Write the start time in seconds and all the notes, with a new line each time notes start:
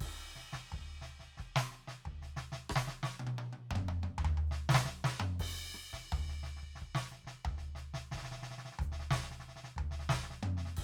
0.01 kick, snare, crash
0.36 snare, hi-hat pedal
0.53 kick, snare
0.72 kick, floor tom
1.02 snare, hi-hat pedal
1.20 kick, snare
1.37 kick, snare
1.56 snare
1.70 snare, hi-hat pedal
1.88 kick, snare
2.06 kick, floor tom
2.22 snare
2.37 snare, hi-hat pedal
2.52 snare
2.70 kick, cross-stick
2.76 snare
2.80 kick
2.88 snare
3.03 snare
3.20 high tom
3.24 kick, high tom
3.39 high tom
3.53 high tom
3.71 kick, mid tom
3.76 mid tom
3.89 mid tom
4.04 mid tom
4.18 floor tom
4.25 floor tom
4.37 floor tom
4.47 hi-hat pedal
4.51 snare
4.69 snare
4.73 kick, snare
4.86 snare
5.04 snare
5.20 mid tom
5.40 kick, crash
5.74 cross-stick
5.93 kick, snare
6.12 kick, floor tom
6.29 snare
6.43 snare, hi-hat pedal
6.57 snare
6.63 kick
6.76 snare
6.82 kick
6.95 snare
7.08 snare, hi-hat pedal
7.25 kick, snare
7.45 kick, floor tom
7.58 snare
7.75 snare, hi-hat pedal
7.94 kick, snare
8.12 kick, snare
8.17 snare
8.23 snare
8.24 snare
8.32 snare
8.38 snare
8.43 snare
8.51 snare
8.58 snare
8.65 snare
8.72 snare
8.79 kick, floor tom, hi-hat pedal
8.90 kick, snare
9.00 snare
9.11 kick, snare, hi-hat pedal
9.21 kick, snare
9.31 snare
9.40 snare
9.49 snare
9.56 snare
9.64 snare
9.77 kick, floor tom
9.91 snare
10.00 snare
10.09 kick, snare
10.20 kick, snare
10.31 snare
10.43 mid tom
10.57 snare
10.66 snare
10.77 kick, crash